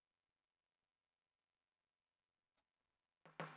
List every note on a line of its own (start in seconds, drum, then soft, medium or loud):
2.57 hi-hat pedal soft
3.25 snare soft
3.40 snare soft